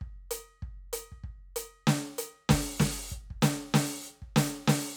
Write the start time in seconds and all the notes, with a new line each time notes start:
0.02 kick
0.32 closed hi-hat
0.63 kick
0.94 closed hi-hat
1.12 kick
1.24 kick
1.57 open hi-hat
1.88 snare, hi-hat pedal
2.19 closed hi-hat
2.50 open hi-hat, kick, snare
2.80 open hi-hat, kick, snare
3.11 kick, hi-hat pedal
3.31 kick
3.39 kick, hi-hat pedal
3.43 closed hi-hat, snare
3.75 open hi-hat, snare
4.06 hi-hat pedal
4.23 kick
4.37 open hi-hat, snare
4.68 open hi-hat, snare